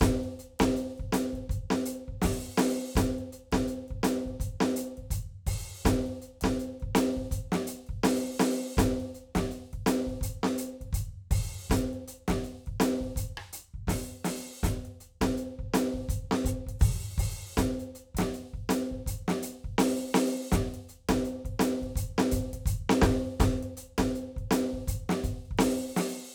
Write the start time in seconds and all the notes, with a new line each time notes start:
0.01 open hi-hat, kick, snare, hi-hat pedal
0.24 closed hi-hat
0.38 closed hi-hat, kick
0.59 kick, snare, closed hi-hat
0.77 closed hi-hat
0.98 kick, closed hi-hat
1.13 closed hi-hat, snare
1.33 kick, closed hi-hat
1.50 closed hi-hat, kick
1.71 snare
1.86 closed hi-hat
2.06 kick, closed hi-hat
2.22 open hi-hat, kick, snare
2.58 open hi-hat, snare
2.96 closed hi-hat, kick, snare, hi-hat pedal
3.19 closed hi-hat
3.33 closed hi-hat
3.52 kick, snare, closed hi-hat
3.68 closed hi-hat
3.88 kick, closed hi-hat
4.04 closed hi-hat, snare
4.26 kick, closed hi-hat
4.40 closed hi-hat, kick
4.61 snare
4.76 closed hi-hat
4.97 kick, closed hi-hat
5.11 open hi-hat, kick
5.47 open hi-hat, kick
5.85 open hi-hat, kick, snare, hi-hat pedal
6.06 closed hi-hat
6.22 closed hi-hat
6.41 kick, snare, closed hi-hat
6.60 closed hi-hat
6.80 kick, closed hi-hat
6.95 closed hi-hat, snare
7.17 kick, closed hi-hat
7.31 closed hi-hat, kick
7.52 snare
7.67 closed hi-hat
7.87 kick, closed hi-hat
8.04 open hi-hat, snare
8.33 kick
8.40 open hi-hat, snare
8.77 closed hi-hat, kick, snare, hi-hat pedal
9.00 closed hi-hat
9.15 closed hi-hat
9.35 kick, snare, closed hi-hat
9.51 closed hi-hat
9.73 kick, closed hi-hat
9.86 closed hi-hat, snare, hi-hat pedal
10.07 kick, closed hi-hat
10.21 closed hi-hat, kick
10.43 snare
10.58 closed hi-hat
10.81 kick, closed hi-hat
10.93 open hi-hat, kick
11.31 open hi-hat, kick
11.70 open hi-hat, kick, snare, hi-hat pedal
11.93 closed hi-hat
12.08 closed hi-hat
12.28 kick, snare, closed hi-hat
12.44 closed hi-hat
12.66 kick, closed hi-hat
12.80 closed hi-hat, snare
13.01 kick, closed hi-hat
13.16 closed hi-hat, kick
13.37 cross-stick
13.53 closed hi-hat
13.74 kick
13.87 open hi-hat, kick, snare, hi-hat pedal
14.25 open hi-hat, kick, snare
14.63 open hi-hat, kick, snare, hi-hat pedal
14.85 closed hi-hat
15.01 closed hi-hat
15.21 kick, snare, closed hi-hat
15.37 closed hi-hat
15.59 kick
15.74 closed hi-hat, snare
15.94 kick
16.09 closed hi-hat, kick
16.31 snare
16.45 open hi-hat, kick
16.49 hi-hat pedal
16.67 kick, closed hi-hat
16.79 open hi-hat, kick, hi-hat pedal
17.18 open hi-hat, kick
17.57 open hi-hat, kick, snare, hi-hat pedal
17.79 closed hi-hat
17.95 closed hi-hat
18.15 kick, snare, closed hi-hat
18.34 closed hi-hat
18.54 kick
18.69 closed hi-hat, snare
18.91 kick
19.07 closed hi-hat, kick
19.28 snare
19.43 closed hi-hat
19.64 kick
19.79 open hi-hat, snare
20.08 kick
20.14 open hi-hat, snare
20.52 open hi-hat, kick, snare, hi-hat pedal
20.74 closed hi-hat
20.89 closed hi-hat
21.09 kick, snare, closed hi-hat
21.25 closed hi-hat
21.45 kick, closed hi-hat
21.60 closed hi-hat, snare
21.82 kick, closed hi-hat
21.96 closed hi-hat, kick
22.18 snare
22.32 closed hi-hat, kick
22.53 kick, closed hi-hat
22.66 closed hi-hat, kick, hi-hat pedal
22.90 snare
23.02 kick, snare
23.40 open hi-hat, kick, snare, hi-hat pedal
23.63 closed hi-hat
23.77 closed hi-hat, kick
23.98 kick, snare, closed hi-hat
24.15 closed hi-hat
24.37 kick, closed hi-hat
24.51 closed hi-hat, snare
24.73 kick
24.88 closed hi-hat, kick
25.09 snare
25.24 closed hi-hat, kick
25.46 closed hi-hat
25.51 kick
25.58 open hi-hat, snare, hi-hat pedal
25.97 open hi-hat, snare